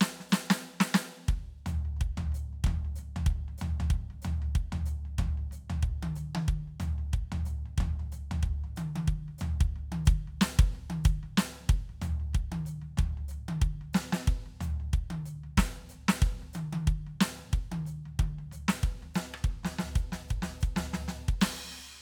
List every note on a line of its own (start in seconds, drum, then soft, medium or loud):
0.01 snare loud
0.20 snare soft
0.29 snare loud
0.29 hi-hat pedal medium
0.50 snare loud
0.60 hi-hat pedal soft
0.80 snare loud
0.92 snare loud
0.92 hi-hat pedal medium
1.29 kick medium
1.29 floor tom medium
1.66 floor tom loud
1.66 hi-hat pedal medium
1.85 floor tom soft
1.97 floor tom soft
2.01 kick medium
2.18 floor tom loud
2.32 floor tom soft
2.32 hi-hat pedal medium
2.53 floor tom soft
2.64 kick medium
2.64 floor tom loud
2.85 floor tom soft
2.96 floor tom soft
2.96 hi-hat pedal medium
3.16 floor tom loud
3.26 kick medium
3.31 floor tom medium
3.48 floor tom soft
3.58 floor tom loud
3.58 hi-hat pedal medium
3.80 floor tom loud
3.90 kick medium
3.90 floor tom soft
4.10 floor tom soft
4.22 floor tom loud
4.22 hi-hat pedal medium
4.42 floor tom medium
4.55 kick medium
4.55 floor tom soft
4.72 floor tom loud
4.86 floor tom soft
4.86 hi-hat pedal medium
5.05 floor tom soft
5.19 kick medium
5.19 floor tom loud
5.38 floor tom soft
5.51 kick soft
5.51 floor tom soft
5.51 hi-hat pedal medium
5.70 floor tom loud
5.83 kick medium
5.83 floor tom soft
6.03 high tom loud
6.16 floor tom soft
6.16 hi-hat pedal medium
6.35 high tom loud
6.48 kick medium
6.48 floor tom soft
6.68 floor tom soft
6.80 floor tom loud
6.80 hi-hat pedal medium
6.98 floor tom soft
7.13 kick medium
7.13 floor tom soft
7.32 floor tom loud
7.46 floor tom medium
7.46 hi-hat pedal medium
7.66 floor tom soft
7.78 kick medium
7.78 floor tom loud
8.00 floor tom medium
8.12 floor tom soft
8.12 hi-hat pedal medium
8.31 floor tom loud
8.43 kick medium
8.43 floor tom medium
8.64 floor tom soft
8.76 hi-hat pedal medium
8.76 high tom loud
8.96 high tom loud
9.08 kick medium
9.08 floor tom soft
9.28 floor tom soft
9.38 floor tom loud
9.38 hi-hat pedal medium
9.61 kick medium
9.61 floor tom medium
9.76 floor tom soft
9.92 high tom loud
10.06 kick loud
10.06 hi-hat pedal medium
10.10 floor tom medium
10.28 floor tom soft
10.41 snare loud
10.59 kick loud
10.59 floor tom soft
10.75 floor tom soft
10.90 high tom loud
11.04 kick loud
11.04 floor tom soft
11.04 hi-hat pedal medium
11.23 floor tom soft
11.38 snare loud
11.69 kick loud
11.69 floor tom soft
11.89 floor tom soft
12.02 floor tom loud
12.02 hi-hat pedal medium
12.20 floor tom soft
12.34 kick medium
12.34 floor tom soft
12.52 high tom loud
12.66 floor tom soft
12.66 hi-hat pedal medium
12.82 floor tom soft
12.98 kick medium
12.98 floor tom loud
13.17 floor tom soft
13.28 floor tom soft
13.28 hi-hat pedal medium
13.49 high tom loud
13.62 kick medium
13.62 floor tom soft
13.81 kick soft
13.81 floor tom soft
13.94 snare loud
13.94 hi-hat pedal medium
14.13 snare loud
14.26 kick medium
14.26 floor tom soft
14.46 floor tom soft
14.61 kick soft
14.61 floor tom loud
14.61 hi-hat pedal medium
14.80 floor tom soft
14.93 kick medium
14.93 floor tom soft
15.10 high tom loud
15.26 floor tom soft
15.26 hi-hat pedal medium
15.44 floor tom soft
15.58 kick medium
15.58 snare loud
15.77 kick soft
15.77 floor tom soft
15.89 kick soft
15.89 floor tom soft
15.89 hi-hat pedal medium
16.09 snare loud
16.22 kick loud
16.22 floor tom soft
16.42 floor tom soft
16.53 hi-hat pedal medium
16.53 high tom loud
16.73 high tom loud
16.87 kick medium
16.87 floor tom soft
17.07 floor tom soft
17.21 snare loud
17.21 hi-hat pedal medium
17.39 floor tom soft
17.53 kick medium
17.53 floor tom soft
17.72 high tom loud
17.86 floor tom soft
17.86 hi-hat pedal medium
18.06 floor tom soft
18.19 kick medium
18.19 high tom loud
18.39 floor tom soft
18.52 floor tom medium
18.52 hi-hat pedal medium
18.68 snare loud
18.83 kick medium
18.83 floor tom soft
19.03 floor tom medium
19.15 snare loud
19.15 hi-hat pedal medium
19.34 cross-stick medium
19.44 kick medium
19.50 floor tom soft
19.64 snare medium
19.64 floor tom medium
19.79 snare medium
19.79 floor tom medium
19.95 kick medium
19.95 hi-hat pedal medium
20.12 snare medium
20.12 floor tom medium
20.28 kick medium
20.28 hi-hat pedal soft
20.42 snare medium
20.42 floor tom medium
20.61 kick medium
20.61 hi-hat pedal medium
20.76 snare loud
20.76 floor tom medium
20.94 snare medium
20.94 floor tom medium
21.01 kick soft
21.08 snare medium
21.08 floor tom medium
21.29 kick medium
21.41 snare loud
21.41 crash loud